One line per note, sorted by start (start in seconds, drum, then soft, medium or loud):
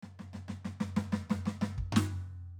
0.03 snare soft
0.03 floor tom soft
0.20 snare soft
0.20 floor tom soft
0.34 snare soft
0.34 floor tom medium
0.49 snare medium
0.49 floor tom medium
0.65 snare medium
0.65 floor tom medium
0.81 snare medium
0.81 floor tom medium
0.97 snare medium
0.97 floor tom medium
1.13 snare medium
1.13 floor tom medium
1.30 snare medium
1.30 floor tom medium
1.46 snare medium
1.46 floor tom medium
1.62 snare medium
1.62 floor tom medium
1.78 kick medium
1.93 snare loud
1.93 floor tom loud